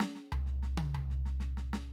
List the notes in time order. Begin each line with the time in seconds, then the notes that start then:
0.00 snare
0.15 snare
0.32 floor tom
0.46 snare
0.63 snare
0.78 high tom
0.95 floor tom
1.10 snare
1.26 snare
1.40 snare
1.57 snare
1.73 snare
1.89 cross-stick